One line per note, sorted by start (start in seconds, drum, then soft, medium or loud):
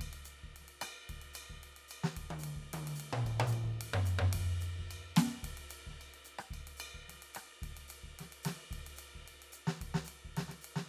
0.01 kick soft
0.01 ride bell medium
0.07 kick soft
0.14 ride medium
0.26 hi-hat pedal medium
0.26 ride medium
0.45 kick soft
0.57 ride medium
0.62 snare soft
0.69 ride medium
0.82 cross-stick medium
0.82 hi-hat pedal soft
0.82 ride bell loud
1.09 kick soft
1.09 snare soft
1.09 ride medium
1.23 ride soft
1.35 hi-hat pedal medium
1.35 ride bell medium
1.51 kick soft
1.51 snare soft
1.59 snare soft
1.62 snare soft
1.64 snare soft
1.64 ride medium
1.78 ride soft
1.89 hi-hat pedal soft
1.89 ride bell medium
2.05 snare medium
2.18 kick soft
2.18 ride medium
2.23 kick soft
2.31 high tom medium
2.40 hi-hat pedal medium
2.45 ride medium
2.57 kick soft
2.63 kick soft
2.74 high tom loud
2.74 ride medium
2.88 ride medium
2.96 hi-hat pedal medium
3.01 ride medium
3.14 mid tom loud
3.26 kick soft
3.26 ride bell medium
3.31 kick soft
3.41 mid tom loud
3.48 hi-hat pedal medium
3.54 ride bell medium
3.65 kick soft
3.82 ride loud
3.95 floor tom loud
4.07 hi-hat pedal medium
4.07 ride medium
4.20 floor tom loud
4.34 kick soft
4.34 ride loud
4.42 kick soft
4.54 snare soft
4.60 snare soft
4.60 hi-hat pedal soft
4.63 snare soft
4.63 ride soft
4.68 snare soft
4.80 kick soft
4.80 snare soft
4.85 kick soft
4.92 ride bell medium
5.17 snare loud
5.17 hi-hat pedal medium
5.17 ride loud
5.44 kick soft
5.44 snare soft
5.44 ride medium
5.50 kick soft
5.50 snare soft
5.55 snare soft
5.55 ride medium
5.59 snare soft
5.70 hi-hat pedal soft
5.70 ride medium
5.88 kick soft
5.88 snare soft
5.97 snare soft
6.00 snare soft
6.00 ride bell medium
6.15 ride soft
6.26 hi-hat pedal medium
6.26 ride soft
6.40 cross-stick medium
6.52 kick soft
6.52 ride bell medium
6.57 kick soft
6.68 ride medium
6.78 hi-hat pedal soft
6.78 ride bell loud
6.96 kick soft
7.09 snare soft
7.09 ride medium
7.14 snare soft
7.23 ride medium
7.35 cross-stick medium
7.35 hi-hat pedal soft
7.35 ride medium
7.61 kick soft
7.61 snare soft
7.61 ride medium
7.69 kick soft
7.76 snare soft
7.76 ride medium
7.82 snare soft
7.89 hi-hat pedal soft
7.89 ride medium
8.05 kick soft
8.20 snare soft
8.20 ride medium
8.34 ride medium
8.44 snare medium
8.44 hi-hat pedal medium
8.44 ride loud
8.72 kick soft
8.72 ride medium
8.88 ride medium
8.97 hi-hat pedal soft
8.97 ride medium
9.16 kick soft
9.29 ride medium
9.43 ride medium
9.53 hi-hat pedal medium
9.53 ride medium
9.68 snare medium
9.82 kick soft
9.82 ride medium
9.89 kick soft
9.95 snare medium
10.06 hi-hat pedal medium
10.06 ride medium
10.26 kick soft
10.38 snare medium
10.38 ride medium
10.49 snare soft
10.49 ride soft
10.62 hi-hat pedal soft
10.62 ride medium
10.77 snare medium